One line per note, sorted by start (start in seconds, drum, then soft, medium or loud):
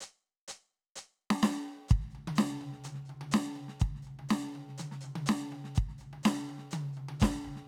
0.01 hi-hat pedal medium
0.48 hi-hat pedal medium
0.96 hi-hat pedal medium
1.30 snare loud
1.41 snare loud
1.41 hi-hat pedal medium
1.50 snare soft
1.88 kick loud
1.88 hi-hat pedal medium
1.88 high tom medium
2.00 snare soft
2.10 hi-hat pedal soft
2.15 high tom medium
2.27 high tom medium
2.35 snare loud
2.35 hi-hat pedal medium
2.49 high tom medium
2.58 hi-hat pedal soft
2.58 high tom medium
2.72 snare soft
2.84 hi-hat pedal medium
2.84 high tom medium
2.94 snare soft
3.05 hi-hat pedal soft
3.09 high tom soft
3.21 high tom medium
3.31 snare loud
3.31 hi-hat pedal medium
3.44 high tom soft
3.54 hi-hat pedal soft
3.54 high tom medium
3.68 snare soft
3.80 kick medium
3.80 hi-hat pedal medium
3.80 high tom medium
3.95 snare soft
4.02 hi-hat pedal soft
4.07 high tom soft
4.19 high tom medium
4.29 snare loud
4.29 hi-hat pedal medium
4.43 high tom soft
4.51 hi-hat pedal soft
4.51 high tom medium
4.68 snare soft
4.78 hi-hat pedal medium
4.78 high tom medium
4.91 snare soft
5.01 hi-hat pedal soft
5.01 high tom soft
5.15 high tom medium
5.26 snare loud
5.26 hi-hat pedal medium
5.40 high tom medium
5.49 hi-hat pedal soft
5.49 high tom medium
5.64 snare soft
5.75 kick medium
5.75 hi-hat pedal medium
5.75 high tom medium
5.88 snare soft
5.98 hi-hat pedal soft
5.98 high tom medium
6.13 high tom medium
6.23 snare loud
6.23 hi-hat pedal medium
6.37 high tom medium
6.45 hi-hat pedal soft
6.45 high tom medium
6.58 snare soft
6.71 hi-hat pedal medium
6.71 high tom medium
6.87 snare soft
6.93 hi-hat pedal soft
6.97 high tom soft
7.08 high tom medium
7.20 kick medium
7.20 snare loud
7.20 hi-hat pedal medium
7.33 high tom medium
7.44 kick soft
7.44 high tom medium
7.56 snare soft